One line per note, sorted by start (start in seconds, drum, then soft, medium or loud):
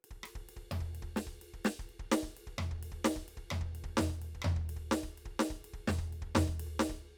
0.04 ride soft
0.10 kick soft
0.23 cross-stick medium
0.23 ride medium
0.35 kick soft
0.49 ride medium
0.56 kick soft
0.71 floor tom loud
0.71 ride medium
0.80 kick soft
0.95 ride soft
1.02 kick soft
1.16 snare medium
1.16 ride medium
1.26 kick soft
1.41 ride soft
1.53 kick soft
1.64 snare medium
1.64 ride soft
1.79 kick soft
1.89 ride soft
1.99 kick soft
2.12 snare loud
2.12 ride medium
2.23 kick soft
2.37 ride soft
2.47 kick soft
2.58 cross-stick medium
2.58 floor tom loud
2.71 kick soft
2.83 ride medium
2.92 kick soft
3.04 snare loud
3.04 ride medium
3.16 kick soft
3.28 ride soft
3.37 kick soft
3.50 cross-stick medium
3.50 floor tom loud
3.61 kick soft
3.75 ride soft
3.84 kick soft
3.97 snare loud
3.97 floor tom loud
4.09 kick soft
4.22 ride soft
4.34 kick soft
4.42 cross-stick medium
4.42 floor tom loud
4.56 kick soft
4.69 ride medium
4.76 kick soft
4.91 snare loud
4.91 ride soft
5.03 kick soft
5.17 ride soft
5.25 kick soft
5.39 snare loud
5.39 ride soft
5.50 kick soft
5.64 ride soft
5.73 kick soft
5.87 snare medium
5.87 floor tom loud
5.98 kick soft
6.12 ride soft
6.22 kick soft
6.35 snare loud
6.35 floor tom loud
6.47 kick soft
6.59 ride medium
6.66 kick soft
6.79 snare loud
6.79 ride soft
6.89 kick soft